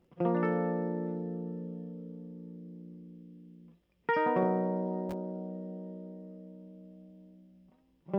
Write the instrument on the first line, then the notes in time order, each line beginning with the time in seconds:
electric guitar
0.18 F3 A#3
0.26 A#3
0.35 D4
0.43 A4
4.10 A#4
4.17 D#4
4.27 B3
4.37 F#3